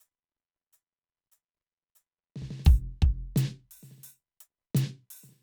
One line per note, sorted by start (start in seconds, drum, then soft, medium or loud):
0.00 hi-hat pedal medium
0.73 hi-hat pedal medium
1.32 hi-hat pedal medium
1.95 hi-hat pedal medium
2.36 snare medium
2.41 kick soft
2.41 snare soft
2.50 snare medium
2.60 snare soft
2.65 open hi-hat medium
2.65 kick loud
2.89 snare soft
3.02 kick loud
3.36 closed hi-hat loud
3.36 snare loud
3.71 open hi-hat medium
3.83 snare soft
3.91 snare soft
3.98 snare soft
4.03 open hi-hat medium
4.08 hi-hat pedal soft
4.40 closed hi-hat medium
4.75 closed hi-hat loud
4.75 snare loud
4.87 snare soft
5.10 open hi-hat medium
5.17 open hi-hat soft
5.23 snare soft
5.29 snare soft
5.32 snare soft